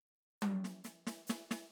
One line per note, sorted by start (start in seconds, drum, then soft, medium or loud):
0.41 hi-hat pedal soft
0.41 high tom loud
0.64 snare soft
0.84 snare soft
0.84 hi-hat pedal medium
1.07 snare medium
1.27 snare medium
1.27 hi-hat pedal medium
1.51 snare medium